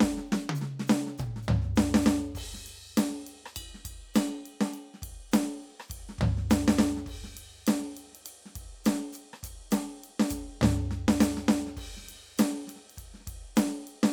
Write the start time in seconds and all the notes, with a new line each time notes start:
0.01 kick, snare, hi-hat pedal
0.18 snare
0.27 hi-hat pedal
0.33 snare
0.50 high tom
0.56 hi-hat pedal
0.62 snare
0.80 snare
0.88 snare, hi-hat pedal
1.07 snare
1.18 kick, hi-hat pedal, mid tom
1.25 kick
1.28 kick
1.37 snare
1.43 hi-hat pedal
1.49 floor tom
1.62 snare
1.76 snare, hi-hat pedal
1.95 snare
2.02 hi-hat pedal
2.06 snare
2.35 kick, hi-hat pedal, crash
2.42 kick
2.46 kick
2.54 snare
2.60 snare
2.67 snare, ride
2.97 snare, hi-hat pedal, ride
3.27 ride
3.46 cross-stick
3.55 kick, hi-hat pedal, ride bell
3.75 snare
3.85 kick, ride bell
3.92 kick
3.95 kick
4.15 snare, hi-hat pedal, ride bell
4.46 ride
4.61 snare
4.73 hi-hat pedal, ride
4.94 snare
5.03 kick, ride
5.09 kick
5.12 kick
5.32 snare, hi-hat pedal, ride
5.43 snare
5.63 ride
5.80 cross-stick
5.89 kick, hi-hat pedal, ride
5.96 kick
6.00 kick
6.09 snare
6.19 kick, floor tom
6.28 kick
6.38 snare
6.50 snare, hi-hat pedal
6.68 snare
6.79 snare
6.97 snare
7.07 kick, crash
7.17 kick
7.24 snare
7.33 cross-stick, snare
7.37 ride
7.67 snare, hi-hat pedal, ride
7.94 hi-hat pedal, ride
8.06 snare
8.12 snare, ride
8.17 snare
8.25 hi-hat pedal, ride
8.46 snare
8.53 kick, snare, ride
8.62 kick
8.65 kick
8.85 snare, hi-hat pedal, ride
8.94 snare
9.13 hi-hat pedal, ride
9.34 cross-stick
9.43 kick, snare, hi-hat pedal, ride
9.52 kick
9.71 kick, snare, hi-hat pedal, ride
10.04 ride
10.20 snare
10.30 kick, hi-hat pedal, ride
10.38 kick
10.42 kick
10.62 snare, floor tom
10.70 snare
10.91 snare
11.09 snare
11.21 snare, hi-hat pedal
11.30 snare
11.37 snare
11.49 snare
11.67 snare
11.77 kick, crash
11.84 kick
11.97 snare
12.04 snare
12.08 snare, ride
12.12 snare
12.38 snare, hi-hat pedal, ride
12.68 snare, ride
12.76 snare
12.90 ride
12.95 kick, hi-hat pedal, ride
13.14 snare
13.21 snare
13.27 kick, ride
13.34 kick
13.56 snare, hi-hat pedal, ride
13.67 snare
13.88 ride
14.04 snare